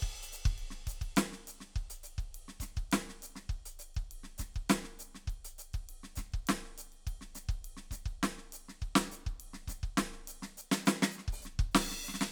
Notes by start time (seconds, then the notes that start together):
0.02 kick, ride
0.16 ride
0.23 open hi-hat
0.32 hi-hat pedal
0.45 kick, ride
0.58 ride
0.70 snare
0.87 kick, hi-hat pedal, ride
1.01 kick, ride
1.16 snare, ride
1.32 snare
1.47 hi-hat pedal, ride
1.60 snare
1.76 kick, ride
1.90 closed hi-hat
2.03 hi-hat pedal, ride
2.18 kick, ride
2.34 ride
2.48 snare
2.60 kick, snare, hi-hat pedal, ride
2.77 kick, ride
2.92 snare, ride
3.09 snare
3.22 hi-hat pedal, ride
3.36 snare
3.49 kick, ride
3.65 closed hi-hat
3.79 hi-hat pedal, ride
3.94 kick, ride
4.11 ride
4.23 snare
4.38 kick, snare, hi-hat pedal, ride
4.54 kick, ride
4.69 snare, ride
4.84 snare
4.99 hi-hat pedal, ride
5.15 snare
5.27 kick, ride
5.44 closed hi-hat
5.58 hi-hat pedal, ride
5.69 snare
5.74 kick, ride
5.89 ride
6.03 snare
6.16 kick, snare, hi-hat pedal, ride
6.32 kick, ride
6.47 snare, ride
6.64 snare
6.78 hi-hat pedal, ride
6.92 ride
7.07 kick, ride
7.21 snare
7.35 snare, hi-hat pedal, ride
7.49 kick, ride
7.64 ride
7.77 snare
7.91 kick, snare, hi-hat pedal, ride
8.06 kick, ride
8.23 snare, ride
8.37 snare
8.52 hi-hat pedal, ride
8.68 snare
8.81 kick, ride
8.95 snare
9.11 hi-hat pedal
9.26 kick
9.40 ride
9.53 snare
9.67 kick, snare, hi-hat pedal, ride
9.83 kick, ride
9.97 snare, ride
10.12 snare
10.27 hi-hat pedal, ride
10.42 snare
10.57 hi-hat pedal
10.71 snare
10.86 snare, hi-hat pedal
10.96 snare
11.02 snare
11.12 hi-hat pedal
11.18 snare
11.28 kick
11.32 open hi-hat
11.42 snare, hi-hat pedal
11.59 kick
11.71 snare, hi-hat pedal, crash
11.91 snare
12.04 hi-hat pedal
12.08 snare
12.14 snare
12.21 snare